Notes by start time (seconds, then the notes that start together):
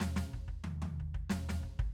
0.00 snare, floor tom
0.16 snare, floor tom
0.34 kick
0.48 kick
0.64 floor tom, high tom
0.82 floor tom, high tom
1.00 kick
1.14 kick
1.30 snare, floor tom
1.49 snare, floor tom
1.63 kick
1.79 kick